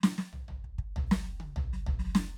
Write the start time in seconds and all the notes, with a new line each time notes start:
0.01 snare
0.04 snare
0.19 snare
0.33 floor tom
0.49 floor tom
0.65 kick
0.79 kick
0.97 floor tom
1.07 hi-hat pedal
1.12 snare
1.25 snare
1.41 high tom
1.57 floor tom
1.74 snare
1.87 floor tom
2.00 snare
2.05 snare
2.16 snare